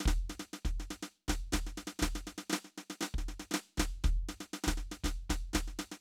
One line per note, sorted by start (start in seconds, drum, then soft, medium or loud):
0.01 snare medium
0.06 kick medium
0.06 snare medium
0.30 snare soft
0.40 snare soft
0.54 snare soft
0.66 kick medium
0.66 snare soft
0.80 snare soft
0.91 snare soft
1.03 snare soft
1.29 kick soft
1.29 snare soft
1.29 snare medium
1.53 kick soft
1.53 snare soft
1.53 snare medium
1.67 snare soft
1.78 snare soft
1.88 snare soft
2.00 kick soft
2.00 snare medium
2.03 snare medium
2.16 snare soft
2.27 snare soft
2.38 snare soft
2.50 snare medium
2.53 snare medium
2.65 snare soft
2.78 snare soft
2.91 snare soft
3.01 snare medium
3.03 snare medium
3.15 kick soft
3.19 snare soft
3.40 snare soft
3.52 snare soft
3.54 snare medium
3.78 kick soft
3.78 snare soft
3.80 snare medium
4.04 kick medium
4.04 snare soft
4.29 snare soft
4.41 snare soft
4.54 snare soft
4.64 kick soft
4.64 snare medium
4.69 snare medium
4.78 snare soft
4.92 snare soft
5.04 kick soft
5.04 snare medium
5.30 kick soft
5.30 snare medium
5.54 kick soft
5.54 snare soft
5.56 snare medium
5.68 snare soft
5.79 snare medium
5.92 snare soft